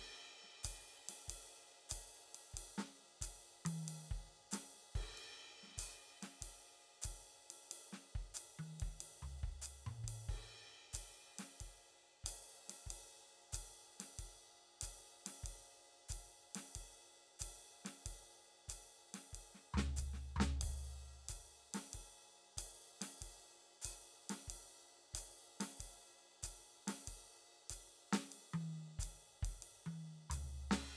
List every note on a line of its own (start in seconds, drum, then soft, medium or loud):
0.44 snare soft
0.64 kick soft
0.64 hi-hat pedal medium
0.64 ride medium
1.09 snare soft
1.09 ride medium
1.28 kick soft
1.28 ride medium
1.90 kick soft
1.90 hi-hat pedal medium
1.90 ride loud
2.35 ride medium
2.49 hi-hat pedal soft
2.54 kick soft
2.54 ride medium
2.78 snare soft
3.22 kick soft
3.22 hi-hat pedal medium
3.22 ride medium
3.65 high tom medium
3.65 ride medium
3.88 ride medium
4.11 kick soft
4.52 snare soft
4.52 hi-hat pedal medium
4.52 ride medium
4.96 kick soft
4.96 ride medium
5.18 ride soft
5.63 snare soft
5.67 snare soft
5.71 snare soft
5.75 kick soft
5.75 snare soft
5.75 hi-hat pedal medium
5.79 ride medium
6.23 snare soft
6.23 ride medium
6.42 kick soft
6.42 ride medium
7.02 kick soft
7.02 hi-hat pedal medium
7.02 ride medium
7.51 ride medium
7.63 hi-hat pedal soft
7.72 ride medium
7.93 snare soft
8.15 kick soft
8.35 hi-hat pedal medium
8.35 ride medium
8.59 high tom soft
8.80 kick soft
8.80 ride medium
9.01 ride medium
9.23 floor tom soft
9.44 kick soft
9.62 hi-hat pedal medium
9.66 ride medium
9.87 mid tom medium
10.04 kick soft
10.08 ride medium
10.29 kick soft
10.29 ride medium
10.93 kick soft
10.93 hi-hat pedal medium
10.93 ride medium
11.39 snare soft
11.39 ride medium
11.61 kick soft
11.61 ride medium
12.24 kick soft
12.24 hi-hat pedal medium
12.24 ride loud
12.69 snare soft
12.69 ride medium
12.87 kick soft
12.91 ride medium
13.53 kick soft
13.53 hi-hat pedal medium
13.53 ride medium
14.00 snare soft
14.00 ride medium
14.19 kick soft
14.19 ride medium
14.82 kick soft
14.82 hi-hat pedal medium
14.82 ride medium
15.26 snare soft
15.26 ride medium
15.44 kick soft
15.44 ride medium
16.09 kick soft
16.09 hi-hat pedal medium
16.09 ride medium
16.55 snare soft
16.55 ride medium
16.76 kick soft
16.76 ride medium
17.40 kick soft
17.40 hi-hat pedal medium
17.40 ride medium
17.85 snare soft
17.85 ride medium
18.06 kick soft
18.06 ride medium
18.69 kick soft
18.69 hi-hat pedal medium
18.69 ride medium
19.14 snare soft
19.14 ride medium
19.33 kick soft
19.33 ride medium
19.55 snare soft
19.74 snare medium
19.74 floor tom medium
19.97 kick soft
19.97 hi-hat pedal medium
19.97 ride medium
20.14 snare soft
20.36 floor tom medium
20.40 snare medium
20.62 kick soft
20.62 ride loud
21.29 kick soft
21.29 hi-hat pedal medium
21.29 ride medium
21.74 snare soft
21.74 ride medium
21.94 kick soft
21.94 ride medium
22.58 kick soft
22.58 hi-hat pedal medium
22.58 ride loud
23.01 snare soft
23.01 ride medium
23.22 kick soft
23.22 ride medium
23.82 kick soft
23.82 hi-hat pedal medium
23.82 ride medium
24.30 snare soft
24.30 ride medium
24.48 kick soft
24.48 ride medium
25.14 kick soft
25.14 hi-hat pedal medium
25.14 ride medium
25.60 snare soft
25.60 ride medium
25.80 kick soft
25.80 ride medium
26.43 kick soft
26.43 hi-hat pedal medium
26.43 ride medium
26.88 snare soft
26.88 ride medium
27.08 kick soft
27.08 ride medium
27.70 kick soft
27.70 hi-hat pedal medium
27.70 ride medium
28.13 snare medium
28.13 ride medium
28.32 ride medium
28.54 high tom medium
28.99 kick soft
28.99 hi-hat pedal medium
29.03 ride medium
29.43 kick soft
29.43 ride medium
29.63 ride medium
29.86 high tom medium
30.30 floor tom medium
30.30 hi-hat pedal medium
30.30 ride medium
30.71 snare medium
30.71 crash medium